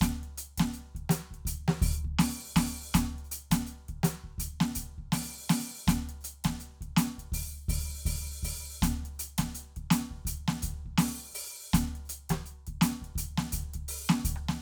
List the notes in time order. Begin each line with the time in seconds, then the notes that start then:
0.01 open hi-hat, kick, snare, hi-hat pedal
0.23 closed hi-hat
0.38 closed hi-hat
0.58 kick, snare, closed hi-hat
0.73 closed hi-hat
0.95 kick, closed hi-hat
1.09 closed hi-hat, snare
1.31 kick, closed hi-hat
1.45 closed hi-hat, kick
1.68 snare
1.82 open hi-hat, kick
1.93 hi-hat pedal
2.05 kick
2.15 kick, snare
2.20 open hi-hat
2.56 open hi-hat, kick, snare
2.94 closed hi-hat, kick, snare, hi-hat pedal
3.18 closed hi-hat
3.24 hi-hat pedal
3.31 closed hi-hat
3.51 closed hi-hat, kick, snare
3.67 closed hi-hat
3.88 kick, closed hi-hat
4.03 closed hi-hat, snare
4.24 kick
4.38 closed hi-hat, kick
4.60 snare
4.75 closed hi-hat, kick
4.98 kick
5.12 open hi-hat, snare
5.48 open hi-hat, kick, snare
5.87 open hi-hat, kick, snare, hi-hat pedal
6.09 closed hi-hat
6.21 open hi-hat, hi-hat pedal
6.44 kick, snare, closed hi-hat
6.60 closed hi-hat
6.81 kick, closed hi-hat
6.97 closed hi-hat, snare
7.18 kick, closed hi-hat
7.32 open hi-hat, kick
7.69 open hi-hat, kick
8.06 open hi-hat, kick
8.43 open hi-hat, kick
8.82 closed hi-hat, kick, snare, hi-hat pedal
9.05 closed hi-hat
9.13 hi-hat pedal
9.19 closed hi-hat
9.38 kick, snare, closed hi-hat
9.55 closed hi-hat
9.76 kick, closed hi-hat
9.91 closed hi-hat, snare
10.11 kick
10.25 closed hi-hat, kick
10.48 snare
10.62 closed hi-hat, kick
10.86 kick
10.98 open hi-hat, snare
11.32 open hi-hat, kick
11.73 closed hi-hat, kick, snare, hi-hat pedal
11.95 closed hi-hat
12.05 hi-hat pedal
12.09 closed hi-hat
12.29 kick, snare, closed hi-hat
12.46 closed hi-hat
12.67 kick, closed hi-hat
12.81 closed hi-hat, snare
13.02 kick, closed hi-hat
13.16 closed hi-hat, kick
13.38 snare
13.52 closed hi-hat, kick
13.74 kick, closed hi-hat
13.88 open hi-hat
14.07 snare, hi-hat pedal
14.25 open hi-hat, kick
14.36 cross-stick, hi-hat pedal
14.49 snare